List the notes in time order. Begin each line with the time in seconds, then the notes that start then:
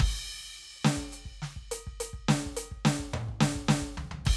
0.00 kick, crash
0.75 hi-hat pedal
0.85 snare
0.97 kick
1.12 closed hi-hat
1.25 kick
1.42 snare
1.56 kick
1.71 closed hi-hat
1.87 kick
2.00 closed hi-hat
2.13 kick
2.28 snare
2.46 kick
2.57 closed hi-hat
2.71 kick
2.85 snare
2.99 kick
3.13 high tom
3.28 kick
3.41 snare
3.55 kick
3.68 snare
3.81 kick
3.97 floor tom
4.11 floor tom
4.25 kick, crash